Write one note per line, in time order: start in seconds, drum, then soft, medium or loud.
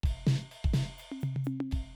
0.03 kick medium
0.03 ride medium
0.27 snare loud
0.27 ride medium
0.51 ride medium
0.64 kick medium
0.74 snare loud
0.74 ride medium
0.98 hi-hat pedal medium
0.98 ride medium
1.12 high tom medium
1.20 floor tom loud
1.20 hi-hat pedal medium
1.36 floor tom loud
1.44 hi-hat pedal medium
1.44 high tom loud
1.60 high tom loud
1.71 kick medium
1.71 ride soft